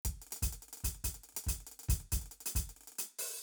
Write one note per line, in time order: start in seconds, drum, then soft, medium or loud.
0.04 kick medium
0.04 closed hi-hat loud
0.22 closed hi-hat medium
0.27 closed hi-hat soft
0.31 closed hi-hat soft
0.31 closed hi-hat loud
0.36 closed hi-hat medium
0.42 closed hi-hat loud
0.42 kick medium
0.53 closed hi-hat medium
0.62 closed hi-hat medium
0.68 closed hi-hat soft
0.73 closed hi-hat medium
0.77 closed hi-hat medium
0.80 kick medium
0.80 closed hi-hat soft
0.84 closed hi-hat loud
0.95 closed hi-hat soft
1.04 closed hi-hat loud
1.04 kick soft
1.14 closed hi-hat medium
1.23 closed hi-hat medium
1.29 closed hi-hat soft
1.32 kick soft
1.32 closed hi-hat soft
1.35 closed hi-hat soft
1.36 closed hi-hat loud
1.44 kick medium
1.44 closed hi-hat medium
1.48 closed hi-hat loud
1.60 closed hi-hat soft
1.67 closed hi-hat medium
1.71 closed hi-hat medium
1.79 closed hi-hat medium
1.83 closed hi-hat medium
1.88 closed hi-hat loud
1.88 kick medium
2.00 closed hi-hat soft
2.12 closed hi-hat loud
2.12 kick medium
2.21 closed hi-hat medium
2.26 closed hi-hat soft
2.31 closed hi-hat medium
2.40 closed hi-hat medium
2.46 closed hi-hat loud
2.55 closed hi-hat loud
2.55 kick medium
2.69 closed hi-hat medium
2.76 closed hi-hat soft
2.81 closed hi-hat soft
2.83 closed hi-hat soft
2.87 closed hi-hat medium
2.92 closed hi-hat soft
2.95 closed hi-hat soft
2.98 closed hi-hat loud
3.19 open hi-hat loud